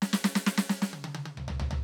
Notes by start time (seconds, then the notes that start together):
0.02 snare
0.13 snare
0.24 snare
0.35 snare
0.46 snare
0.58 snare
0.69 snare
0.82 snare
0.93 high tom
1.04 high tom
1.15 high tom
1.25 high tom
1.37 floor tom
1.48 floor tom
1.60 floor tom
1.71 floor tom